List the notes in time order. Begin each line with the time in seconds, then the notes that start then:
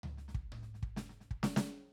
0.07 floor tom
0.18 snare
0.29 snare
0.35 kick
0.53 high tom
0.63 snare
0.75 snare
0.83 kick
0.97 snare
1.10 snare
1.21 snare
1.31 kick
1.44 snare
1.57 snare